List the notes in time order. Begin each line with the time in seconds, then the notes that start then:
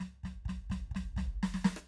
0.00 kick, snare, floor tom
0.24 kick, snare, floor tom
0.45 kick, snare, floor tom
0.70 kick, snare, floor tom
0.91 kick, floor tom
0.96 snare
1.17 kick, snare, floor tom
1.43 snare
1.54 snare
1.65 snare
1.76 cross-stick